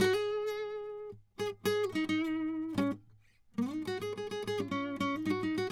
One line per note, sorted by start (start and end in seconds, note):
0.01 0.14 F#4
0.14 0.33 G#4
1.40 1.55 G#4
1.66 1.85 G#4
1.85 1.92 F#4
1.96 2.07 D#4
2.10 2.23 D#4
2.79 2.95 C#4
3.59 3.86 C#4
3.89 4.00 F#4
4.03 4.15 G#4
4.18 4.29 G#4
4.32 4.47 G#4
4.48 4.66 G#4
4.61 4.68 C#4
4.72 4.85 C#4
5.01 5.26 C#4
5.26 5.34 D#4
5.31 5.50 F#4
5.36 5.43 D#4
5.44 5.62 D#4
5.58 5.71 F#4